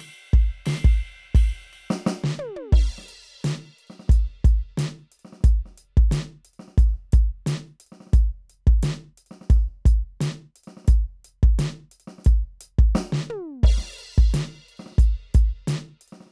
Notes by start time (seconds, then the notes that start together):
0.01 ride bell
0.34 kick, snare
0.66 snare, ride bell
0.85 kick
1.36 kick, ride bell
1.73 ride
1.91 snare
2.07 snare, hi-hat pedal
2.25 snare
2.39 high tom
2.57 high tom
2.73 kick, crash
2.99 snare
3.09 closed hi-hat
3.45 open hi-hat, snare, hi-hat pedal
3.79 closed hi-hat
3.88 snare, closed hi-hat
4.00 snare
4.09 closed hi-hat, kick, snare
4.15 snare
4.21 snare
4.26 snare
4.45 kick, closed hi-hat
4.78 closed hi-hat, snare
4.99 hi-hat pedal
5.12 closed hi-hat
5.20 closed hi-hat
5.26 snare
5.33 snare
5.41 closed hi-hat, kick, snare
5.49 snare
5.66 snare
5.73 snare
5.78 closed hi-hat
5.98 kick
6.12 open hi-hat, snare
6.27 hi-hat pedal
6.45 closed hi-hat
6.54 closed hi-hat
6.60 snare
6.69 snare
6.79 closed hi-hat, kick
6.87 snare
6.94 snare
7.13 closed hi-hat, kick
7.47 closed hi-hat, snare
7.67 hi-hat pedal
7.81 closed hi-hat
7.87 closed hi-hat
7.93 snare
8.01 snare
8.08 snare
8.13 closed hi-hat, kick, snare
8.18 snare
8.50 closed hi-hat
8.68 kick
8.84 closed hi-hat, snare
9.18 closed hi-hat
9.27 closed hi-hat
9.32 snare
9.42 snare
9.51 closed hi-hat, kick, snare
9.57 snare
9.69 snare
9.86 closed hi-hat, kick
10.21 closed hi-hat, snare
10.57 closed hi-hat
10.64 closed hi-hat, snare
10.78 snare
10.86 closed hi-hat, kick, snare
10.93 snare
11.25 closed hi-hat
11.44 kick
11.60 closed hi-hat, snare
11.92 closed hi-hat
12.01 closed hi-hat
12.08 snare
12.19 snare
12.25 closed hi-hat, kick
12.30 snare
12.62 closed hi-hat
12.79 kick
12.96 snare
13.13 snare
13.30 mid tom
13.64 kick, crash
13.79 snare
13.82 snare
13.99 closed hi-hat
14.19 kick
14.35 closed hi-hat, snare
14.69 closed hi-hat
14.78 closed hi-hat, snare
14.87 snare
14.93 snare
14.99 closed hi-hat, kick, snare
15.35 closed hi-hat, kick
15.68 closed hi-hat, snare
16.02 closed hi-hat
16.09 closed hi-hat
16.13 snare
16.21 snare
16.27 snare